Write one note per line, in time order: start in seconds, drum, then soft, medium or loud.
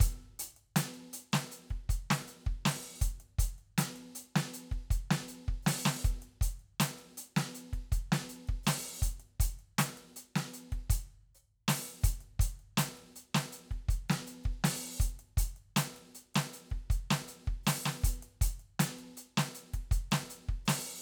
0.00 closed hi-hat loud
0.00 kick medium
0.39 closed hi-hat loud
0.57 closed hi-hat soft
0.76 closed hi-hat loud
0.76 snare loud
0.94 closed hi-hat soft
1.13 closed hi-hat loud
1.33 snare loud
1.33 closed hi-hat soft
1.52 closed hi-hat medium
1.70 kick soft
1.70 closed hi-hat soft
1.89 closed hi-hat medium
1.89 kick medium
2.10 closed hi-hat soft
2.10 snare loud
2.28 closed hi-hat medium
2.46 kick medium
2.46 closed hi-hat soft
2.65 open hi-hat loud
2.65 snare loud
3.01 closed hi-hat loud
3.01 kick medium
3.01 hi-hat pedal medium
3.20 closed hi-hat soft
3.39 closed hi-hat loud
3.39 kick medium
3.58 closed hi-hat soft
3.78 closed hi-hat loud
3.78 snare loud
3.96 closed hi-hat soft
4.15 closed hi-hat medium
4.36 snare loud
4.36 closed hi-hat soft
4.54 closed hi-hat medium
4.72 kick soft
4.72 closed hi-hat soft
4.91 closed hi-hat medium
4.91 kick medium
5.11 snare loud
5.28 closed hi-hat medium
5.48 kick medium
5.48 closed hi-hat soft
5.63 snare loud
5.63 hi-hat pedal soft
5.68 open hi-hat loud
5.85 snare loud
6.03 closed hi-hat medium
6.03 kick medium
6.03 hi-hat pedal medium
6.22 closed hi-hat soft
6.41 closed hi-hat loud
6.41 kick medium
6.60 closed hi-hat soft
6.80 closed hi-hat loud
6.80 snare loud
6.99 closed hi-hat soft
7.18 closed hi-hat medium
7.37 snare loud
7.37 closed hi-hat soft
7.55 closed hi-hat medium
7.73 kick soft
7.73 closed hi-hat soft
7.92 closed hi-hat medium
7.92 kick medium
8.12 snare loud
8.12 closed hi-hat soft
8.29 closed hi-hat medium
8.48 kick medium
8.48 closed hi-hat soft
8.63 open hi-hat loud
8.63 snare loud
8.63 hi-hat pedal soft
9.01 closed hi-hat loud
9.01 kick medium
9.01 hi-hat pedal medium
9.20 closed hi-hat soft
9.40 closed hi-hat loud
9.40 kick medium
9.59 closed hi-hat soft
9.78 closed hi-hat loud
9.78 snare loud
9.98 closed hi-hat soft
10.16 closed hi-hat medium
10.36 snare loud
10.36 closed hi-hat soft
10.54 closed hi-hat medium
10.72 kick soft
10.72 closed hi-hat soft
10.90 closed hi-hat loud
10.90 kick medium
11.35 hi-hat pedal soft
11.68 open hi-hat loud
11.68 snare loud
12.01 closed hi-hat loud
12.01 kick medium
12.01 hi-hat pedal medium
12.21 closed hi-hat soft
12.40 closed hi-hat loud
12.40 kick medium
12.59 closed hi-hat soft
12.78 closed hi-hat loud
12.78 snare loud
12.97 closed hi-hat soft
13.16 closed hi-hat medium
13.35 snare loud
13.35 closed hi-hat soft
13.53 closed hi-hat medium
13.71 kick soft
13.71 closed hi-hat soft
13.89 closed hi-hat medium
13.89 kick medium
14.09 snare loud
14.09 closed hi-hat soft
14.27 closed hi-hat medium
14.44 kick medium
14.44 closed hi-hat soft
14.64 open hi-hat loud
14.64 snare loud
15.00 closed hi-hat loud
15.00 kick medium
15.00 hi-hat pedal medium
15.19 closed hi-hat soft
15.37 closed hi-hat loud
15.37 kick medium
15.56 closed hi-hat soft
15.76 closed hi-hat loud
15.76 snare loud
15.96 closed hi-hat soft
16.15 closed hi-hat medium
16.35 snare loud
16.35 closed hi-hat soft
16.53 closed hi-hat medium
16.71 kick soft
16.71 closed hi-hat soft
16.90 closed hi-hat medium
16.90 kick medium
17.10 snare loud
17.10 closed hi-hat soft
17.28 closed hi-hat medium
17.47 kick medium
17.47 closed hi-hat soft
17.63 open hi-hat loud
17.63 snare loud
17.63 hi-hat pedal soft
17.86 snare loud
18.01 closed hi-hat loud
18.01 kick medium
18.01 hi-hat pedal medium
18.23 closed hi-hat soft
18.41 closed hi-hat loud
18.41 kick medium
18.60 closed hi-hat soft
18.80 closed hi-hat loud
18.80 snare loud
18.99 closed hi-hat soft
19.17 closed hi-hat medium
19.38 snare loud
19.55 closed hi-hat medium
19.74 kick soft
19.74 closed hi-hat medium
19.91 closed hi-hat medium
19.91 kick medium
20.12 snare loud
20.12 closed hi-hat medium
20.30 closed hi-hat medium
20.49 kick medium
20.49 closed hi-hat soft
20.65 open hi-hat loud
20.65 snare loud
20.65 hi-hat pedal soft